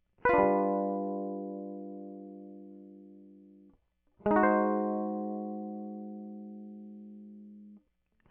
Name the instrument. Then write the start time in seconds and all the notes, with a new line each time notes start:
electric guitar
0.26 F4 B4
0.34 D4
0.39 G3
4.27 G#3
4.31 D#4
4.36 F#4
4.44 C5